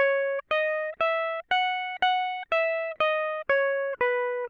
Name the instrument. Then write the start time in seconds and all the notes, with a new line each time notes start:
electric guitar
0.00 C#5
0.52 D#5
1.01 E5
1.52 F#5
2.03 F#5
2.52 E5
3.01 D#5
3.50 C#5
4.01 B4